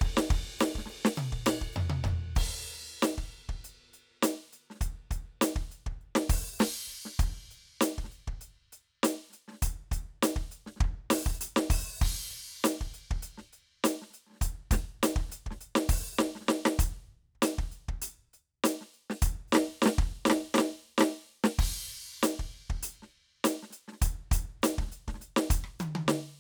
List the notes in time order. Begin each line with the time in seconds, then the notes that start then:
0.01 kick, hi-hat pedal, ride
0.18 snare
0.30 kick, hi-hat pedal, ride
0.59 snare, hi-hat pedal, ride
0.76 kick, snare
0.86 snare, ride
1.05 snare
1.16 hi-hat pedal, mid tom
1.33 kick
1.47 snare, hi-hat pedal, ride bell
1.62 kick
1.73 floor tom, hi-hat pedal
1.90 mid tom
2.05 kick, floor tom, hi-hat pedal
2.33 kick, hi-hat pedal
2.37 kick, crash
3.01 open hi-hat, kick, snare
3.06 hi-hat pedal
3.18 kick
3.35 closed hi-hat
3.50 kick
3.65 closed hi-hat
3.94 closed hi-hat
4.23 closed hi-hat, snare
4.53 closed hi-hat
4.71 snare
4.75 snare
4.82 closed hi-hat, kick
5.11 closed hi-hat, kick
5.42 closed hi-hat, snare
5.56 kick
5.72 closed hi-hat
5.87 kick
6.02 closed hi-hat
6.16 snare
6.30 open hi-hat, kick
6.60 snare, hi-hat pedal, crash
6.88 kick, closed hi-hat
7.06 snare
7.20 closed hi-hat, kick
7.51 closed hi-hat
7.82 closed hi-hat, snare
7.99 kick
8.05 snare
8.12 closed hi-hat
8.28 kick
8.42 closed hi-hat
8.73 closed hi-hat
9.04 closed hi-hat, snare
9.30 snare
9.33 closed hi-hat, snare
9.48 snare
9.52 snare
9.54 snare
9.63 closed hi-hat, kick
9.92 closed hi-hat, kick
10.23 closed hi-hat, snare
10.37 kick
10.52 closed hi-hat
10.67 snare
10.77 snare
10.81 kick, snare
11.11 open hi-hat, snare
11.27 kick
11.36 hi-hat pedal
11.42 closed hi-hat
11.57 snare
11.71 open hi-hat, kick
12.02 kick, hi-hat pedal, crash
12.31 closed hi-hat
12.65 closed hi-hat, snare
12.81 kick
12.95 closed hi-hat
13.11 kick
13.23 closed hi-hat
13.38 snare
13.53 closed hi-hat
13.85 closed hi-hat, snare
14.02 snare
14.11 closed hi-hat, snare
14.27 snare
14.31 snare
14.33 snare
14.36 snare
14.42 closed hi-hat, kick
14.71 closed hi-hat, kick, snare
15.04 closed hi-hat, snare
15.17 kick
15.29 closed hi-hat, snare
15.47 kick
15.51 snare
15.61 closed hi-hat
15.76 snare
15.90 open hi-hat, kick
16.19 snare, hi-hat pedal
16.36 snare
16.41 snare
16.46 snare
16.49 snare
16.66 snare
16.80 open hi-hat, kick
17.36 kick
17.43 open hi-hat, snare, hi-hat pedal
17.59 kick
17.72 closed hi-hat
17.89 kick
18.02 closed hi-hat
18.34 closed hi-hat
18.64 closed hi-hat, snare
18.82 snare
18.94 closed hi-hat
19.11 snare
19.23 open hi-hat, kick
19.48 hi-hat pedal
19.53 snare
19.56 snare
19.83 snare
19.86 snare
19.99 kick
20.26 snare
20.30 snare
20.55 snare
20.59 snare
20.99 snare
21.01 snare
21.45 snare
21.57 kick, hi-hat pedal, crash
22.22 closed hi-hat, kick, snare
22.40 kick
22.70 kick
22.83 closed hi-hat
23.03 snare
23.45 closed hi-hat, snare
23.63 snare
23.71 closed hi-hat, snare
23.89 snare
23.93 snare
24.02 closed hi-hat, kick
24.32 closed hi-hat, kick
24.63 closed hi-hat, snare, hi-hat pedal
24.79 kick, snare
24.88 snare
24.93 closed hi-hat
25.08 kick, snare
25.15 snare
25.20 closed hi-hat, snare
25.37 snare
25.51 closed hi-hat, kick
25.65 cross-stick
25.80 hi-hat pedal, high tom
25.96 high tom
26.05 kick, snare, hi-hat pedal